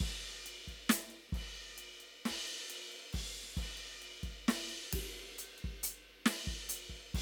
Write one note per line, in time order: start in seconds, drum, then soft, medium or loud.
0.01 kick medium
0.01 snare soft
0.01 crash medium
0.46 closed hi-hat medium
0.57 snare soft
0.68 kick soft
0.68 closed hi-hat soft
0.89 closed hi-hat loud
0.89 snare loud
1.10 closed hi-hat soft
1.29 kick soft
1.29 snare soft
1.34 crash medium
1.55 closed hi-hat soft
1.78 closed hi-hat medium
2.00 closed hi-hat soft
2.25 snare medium
2.25 crash loud
2.30 kick soft
2.47 closed hi-hat soft
2.70 closed hi-hat medium
2.92 closed hi-hat soft
3.13 kick soft
3.13 ride medium
3.43 snare soft
3.48 snare soft
3.54 kick soft
3.54 snare soft
3.54 crash medium
3.77 closed hi-hat soft
4.02 closed hi-hat soft
4.23 kick soft
4.23 closed hi-hat soft
4.48 snare loud
4.48 crash loud
4.69 closed hi-hat soft
4.93 kick soft
4.93 ride loud
5.38 closed hi-hat medium
5.58 closed hi-hat soft
5.64 kick soft
5.83 closed hi-hat loud
6.26 snare loud
6.26 crash medium
6.47 kick soft
6.69 closed hi-hat loud
6.90 kick soft
7.14 kick medium
7.14 ride loud